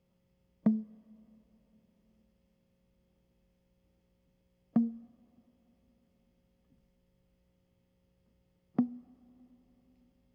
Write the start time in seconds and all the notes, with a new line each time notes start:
0.67 A3
4.77 A#3
8.79 B3